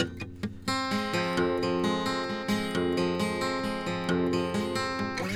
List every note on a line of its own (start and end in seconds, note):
0.00 1.37 F2
0.69 2.05 C4
0.93 1.84 G#3
1.15 1.61 F3
1.38 2.75 F2
1.64 2.96 F3
1.85 2.28 G#3
2.07 3.40 C4
2.31 2.47 G#3
2.50 3.18 G#3
2.76 4.09 F2
2.98 3.85 F3
3.21 3.62 G#3
3.42 4.74 C4
3.65 4.53 G#3
3.88 4.30 F3
4.10 5.35 F2
4.10 5.34 C3
4.34 5.17 F3
4.55 4.97 G#3
4.77 5.34 C4
5.00 5.13 G#3